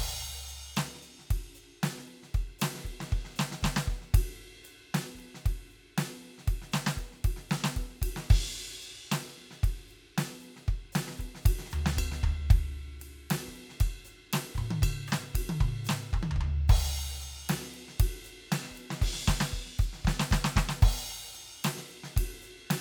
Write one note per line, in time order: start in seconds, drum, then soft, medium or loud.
0.48 hi-hat pedal medium
0.48 ride soft
0.77 snare loud
0.77 ride medium
0.95 snare soft
1.03 hi-hat pedal soft
1.03 ride soft
1.20 snare soft
1.31 kick medium
1.31 ride medium
1.55 hi-hat pedal medium
1.55 ride soft
1.84 snare loud
1.84 ride medium
1.98 snare soft
2.08 ride soft
2.23 snare soft
2.35 kick medium
2.35 ride bell soft
2.59 snare loud
2.59 hi-hat pedal medium
2.59 ride loud
2.75 snare medium
2.78 snare medium
2.83 kick soft
2.83 hi-hat pedal soft
2.87 ride soft
3.01 snare medium
3.13 kick medium
3.13 ride soft
3.25 snare soft
3.31 snare soft
3.35 snare soft
3.35 hi-hat pedal medium
3.40 snare loud
3.52 snare medium
3.61 kick medium
3.61 snare loud
3.61 hi-hat pedal soft
3.77 snare loud
3.88 kick medium
3.88 snare soft
4.02 snare soft
4.14 kick loud
4.14 hi-hat pedal soft
4.14 ride loud
4.65 hi-hat pedal medium
4.65 ride medium
4.95 snare loud
4.95 ride loud
5.15 kick soft
5.15 hi-hat pedal soft
5.21 ride soft
5.35 snare medium
5.46 kick medium
5.46 ride medium
5.70 hi-hat pedal soft
5.70 ride soft
5.98 snare loud
5.98 ride loud
6.23 ride soft
6.39 snare soft
6.48 kick medium
6.48 ride medium
6.62 snare soft
6.73 snare loud
6.73 hi-hat pedal medium
6.87 snare loud
6.97 kick soft
6.97 ride bell soft
7.12 snare soft
7.25 kick medium
7.25 ride medium
7.37 snare soft
7.50 snare loud
7.50 hi-hat pedal soft
7.64 snare loud
7.77 kick medium
7.77 ride medium
7.91 snare soft
8.02 kick medium
8.02 ride loud
8.17 snare medium
8.28 kick loud
8.28 hi-hat pedal soft
8.28 ride loud
8.82 hi-hat pedal soft
9.12 snare loud
9.12 ride loud
9.28 snare soft
9.51 snare soft
9.64 kick medium
9.64 ride medium
9.88 hi-hat pedal soft
9.88 ride soft
10.18 snare loud
10.18 ride loud
10.32 snare soft
10.40 hi-hat pedal soft
10.40 ride soft
10.57 snare soft
10.68 kick medium
10.68 ride bell soft
10.93 snare loud
10.93 hi-hat pedal medium
10.93 ride loud
11.08 snare medium
11.11 snare medium
11.17 kick soft
11.17 snare soft
11.17 hi-hat pedal soft
11.22 ride medium
11.35 snare medium
11.43 kick loud
11.43 hi-hat pedal soft
11.43 ride loud
11.59 snare medium
11.66 snare soft
11.71 floor tom loud
11.71 hi-hat pedal medium
11.86 snare loud
11.98 kick medium
11.98 ride bell loud
12.12 snare medium
12.20 kick medium
12.20 floor tom loud
12.20 hi-hat pedal soft
12.49 kick loud
12.49 hi-hat pedal soft
12.49 ride medium
13.00 hi-hat pedal soft
13.00 ride medium
13.31 snare loud
13.31 ride loud
13.47 kick soft
13.47 snare soft
13.53 hi-hat pedal soft
13.53 ride soft
13.70 snare soft
13.81 kick medium
13.81 ride bell medium
14.05 hi-hat pedal medium
14.05 ride soft
14.33 snare loud
14.33 ride loud
14.56 kick soft
14.56 hi-hat pedal medium
14.56 mid tom loud
14.71 high tom loud
14.83 kick medium
14.83 ride bell loud
15.07 kick soft
15.07 cross-stick medium
15.07 hi-hat pedal medium
15.13 snare loud
15.35 kick medium
15.35 ride loud
15.50 high tom loud
15.61 kick medium
15.61 mid tom loud
15.85 hi-hat pedal medium
15.85 ride bell medium
15.89 snare loud
16.04 snare soft
16.13 kick medium
16.13 mid tom medium
16.23 high tom loud
16.32 floor tom loud
16.37 kick medium
16.41 floor tom loud
16.69 kick loud
16.69 hi-hat pedal soft
16.69 crash loud
17.21 hi-hat pedal medium
17.50 snare loud
17.50 ride loud
17.62 snare soft
17.64 snare soft
17.67 snare soft
17.75 ride soft
17.89 snare soft
18.00 kick loud
18.00 ride loud
18.25 hi-hat pedal medium
18.25 ride soft
18.52 snare loud
18.52 ride bell loud
18.64 snare medium
18.68 kick soft
18.68 snare soft
18.75 hi-hat pedal medium
18.75 ride soft
18.91 snare loud
19.02 kick medium
19.02 ride loud
19.14 snare medium
19.22 snare soft
19.28 kick medium
19.28 snare loud
19.28 hi-hat pedal medium
19.41 snare loud
19.53 kick soft
19.53 snare soft
19.66 snare soft
19.71 snare soft
19.73 snare soft
19.76 snare soft
19.76 ride medium
19.80 kick medium
19.80 hi-hat pedal medium
19.93 snare soft
19.98 snare soft
20.05 kick medium
20.05 snare loud
20.05 hi-hat pedal soft
20.20 snare loud
20.30 kick medium
20.30 snare loud
20.30 hi-hat pedal medium
20.45 snare loud
20.57 kick medium
20.57 snare loud
20.69 snare loud
20.82 kick loud
20.82 hi-hat pedal medium
20.82 crash loud
21.34 hi-hat pedal medium
21.34 ride soft
21.65 snare loud
21.65 ride loud
21.78 snare medium
21.89 hi-hat pedal soft
21.89 ride soft
22.04 snare medium
22.17 kick medium
22.17 ride loud
22.42 hi-hat pedal medium
22.42 ride soft
22.71 snare loud
22.71 ride loud